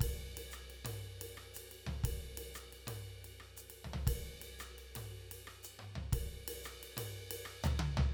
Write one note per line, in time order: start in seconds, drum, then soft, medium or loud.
0.01 kick medium
0.01 ride loud
0.38 ride medium
0.51 cross-stick medium
0.51 hi-hat pedal medium
0.70 ride soft
0.85 mid tom loud
0.85 ride loud
1.22 ride loud
1.38 cross-stick soft
1.54 hi-hat pedal medium
1.54 ride medium
1.72 ride medium
1.87 floor tom medium
2.04 kick medium
2.04 ride loud
2.38 ride loud
2.55 cross-stick medium
2.55 hi-hat pedal medium
2.73 ride medium
2.88 mid tom medium
2.88 ride medium
3.25 ride medium
3.40 cross-stick soft
3.57 hi-hat pedal medium
3.57 ride medium
3.70 ride medium
3.85 floor tom medium
3.94 floor tom medium
4.07 kick medium
4.07 ride loud
4.42 ride medium
4.59 cross-stick medium
4.59 hi-hat pedal medium
4.79 ride medium
4.96 mid tom medium
4.96 ride medium
5.32 ride medium
5.48 cross-stick medium
5.63 hi-hat pedal medium
5.63 ride bell medium
5.80 mid tom medium
5.96 floor tom medium
6.13 kick medium
6.13 ride loud
6.48 ride loud
6.64 cross-stick medium
6.64 hi-hat pedal medium
6.83 ride medium
6.97 mid tom medium
6.97 ride loud
7.31 ride loud
7.46 cross-stick medium
7.64 floor tom loud
7.64 hi-hat pedal medium
7.80 high tom loud
7.98 floor tom loud